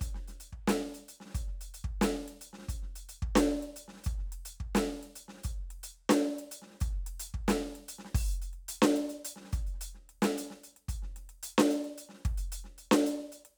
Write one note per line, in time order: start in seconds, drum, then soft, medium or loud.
0.01 closed hi-hat medium
0.01 kick medium
0.15 snare soft
0.28 closed hi-hat soft
0.28 snare soft
0.41 closed hi-hat medium
0.53 kick soft
0.68 closed hi-hat medium
0.68 snare loud
0.82 snare soft
0.95 closed hi-hat soft
1.09 closed hi-hat medium
1.21 snare soft
1.26 snare soft
1.30 snare soft
1.34 closed hi-hat medium
1.34 kick medium
1.34 snare soft
1.48 snare soft
1.54 snare soft
1.61 closed hi-hat medium
1.75 closed hi-hat medium
1.85 kick medium
2.02 closed hi-hat medium
2.02 snare loud
2.15 snare soft
2.28 closed hi-hat soft
2.42 closed hi-hat medium
2.54 snare soft
2.59 snare soft
2.62 snare soft
2.69 closed hi-hat medium
2.69 kick medium
2.83 snare soft
2.96 closed hi-hat medium
3.09 closed hi-hat medium
3.23 kick medium
3.36 closed hi-hat medium
3.36 snare loud
3.63 closed hi-hat soft
3.77 closed hi-hat medium
3.89 snare soft
3.93 snare soft
3.97 snare soft
4.00 snare soft
4.04 closed hi-hat medium
4.04 kick medium
4.19 snare soft
4.23 snare soft
4.27 snare soft
4.33 closed hi-hat medium
4.46 closed hi-hat medium
4.61 kick soft
4.75 closed hi-hat medium
4.75 snare loud
5.03 closed hi-hat soft
5.16 closed hi-hat medium
5.29 snare soft
5.34 snare soft
5.37 snare soft
5.44 closed hi-hat medium
5.44 kick medium
5.60 snare soft
5.71 closed hi-hat soft
5.84 closed hi-hat medium
6.10 closed hi-hat medium
6.10 snare loud
6.24 snare soft
6.39 closed hi-hat medium
6.52 closed hi-hat medium
6.62 snare soft
6.67 snare soft
6.71 snare soft
6.75 snare soft
6.81 closed hi-hat medium
6.81 kick medium
6.91 snare soft
6.94 snare soft
6.97 snare soft
7.07 closed hi-hat medium
7.20 closed hi-hat loud
7.35 kick medium
7.49 closed hi-hat medium
7.49 snare loud
7.57 snare soft
7.63 snare soft
7.66 snare soft
7.76 closed hi-hat soft
7.89 closed hi-hat medium
7.99 snare soft
8.05 cross-stick soft
8.05 snare soft
8.15 open hi-hat loud
8.15 kick medium
8.42 closed hi-hat soft
8.54 closed hi-hat soft
8.69 closed hi-hat loud
8.82 snare loud
8.97 closed hi-hat medium
9.10 closed hi-hat soft
9.25 closed hi-hat loud
9.36 snare soft
9.41 snare soft
9.45 snare soft
9.48 snare soft
9.53 closed hi-hat medium
9.53 kick medium
9.53 snare soft
9.59 snare soft
9.67 closed hi-hat soft
9.75 snare soft
9.81 closed hi-hat medium
9.95 snare soft
10.10 closed hi-hat soft
10.22 closed hi-hat medium
10.22 snare loud
10.38 closed hi-hat medium
10.51 snare soft
10.55 snare soft
10.64 closed hi-hat soft
10.77 closed hi-hat soft
10.89 closed hi-hat medium
10.89 kick medium
11.03 snare soft
11.12 kick soft
11.17 snare soft
11.17 closed hi-hat soft
11.30 closed hi-hat soft
11.43 closed hi-hat loud
11.59 snare loud
11.71 closed hi-hat soft
11.85 closed hi-hat soft
11.98 closed hi-hat medium
12.10 snare soft
12.14 snare soft
12.20 snare soft
12.23 kick medium
12.23 snare soft
12.23 closed hi-hat soft
12.30 snare soft
12.38 closed hi-hat soft
12.52 closed hi-hat medium
12.65 snare soft
12.79 closed hi-hat medium
12.92 closed hi-hat soft
12.92 snare loud
13.07 closed hi-hat medium
13.32 closed hi-hat medium
13.46 closed hi-hat soft